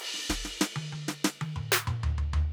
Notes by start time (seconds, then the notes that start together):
0.00 ride
0.14 snare
0.18 snare
0.22 snare
0.25 snare
0.29 kick, snare
0.45 snare
0.61 snare
0.76 high tom
0.92 high tom
1.08 snare
1.24 snare
1.41 open hi-hat, high tom
1.56 mid tom
1.72 snare
1.87 mid tom
2.03 floor tom
2.18 floor tom
2.33 floor tom